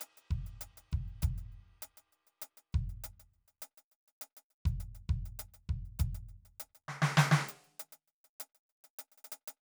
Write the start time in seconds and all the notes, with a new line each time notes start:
0.01 closed hi-hat
0.17 closed hi-hat
0.31 kick, closed hi-hat
0.38 kick
0.46 closed hi-hat
0.61 closed hi-hat
0.77 closed hi-hat
0.92 closed hi-hat, kick
1.08 closed hi-hat
1.22 closed hi-hat, kick
1.38 closed hi-hat
1.52 closed hi-hat
1.68 closed hi-hat
1.82 closed hi-hat
1.97 closed hi-hat
2.12 closed hi-hat
2.27 closed hi-hat
2.42 closed hi-hat
2.57 closed hi-hat
2.73 kick, closed hi-hat
2.89 closed hi-hat
3.04 closed hi-hat
3.20 closed hi-hat
3.33 closed hi-hat
3.48 closed hi-hat
3.62 closed hi-hat
3.77 closed hi-hat
3.92 closed hi-hat
4.08 closed hi-hat
4.21 closed hi-hat
4.37 closed hi-hat
4.50 closed hi-hat
4.65 closed hi-hat, kick
4.80 closed hi-hat
4.95 closed hi-hat
5.09 kick, closed hi-hat
5.25 closed hi-hat
5.39 closed hi-hat
5.54 closed hi-hat
5.69 kick, closed hi-hat
5.85 closed hi-hat
5.99 closed hi-hat, kick
6.15 closed hi-hat
6.29 closed hi-hat
6.45 closed hi-hat
6.60 closed hi-hat
6.75 closed hi-hat
6.88 snare
7.02 snare
7.17 snare
7.31 snare
7.49 closed hi-hat
7.64 closed hi-hat
7.79 closed hi-hat
7.92 closed hi-hat
8.08 closed hi-hat
8.24 closed hi-hat
8.40 closed hi-hat
8.55 closed hi-hat
8.69 closed hi-hat
8.84 closed hi-hat
8.99 closed hi-hat
9.12 closed hi-hat
9.18 closed hi-hat
9.24 closed hi-hat
9.32 closed hi-hat
9.48 closed hi-hat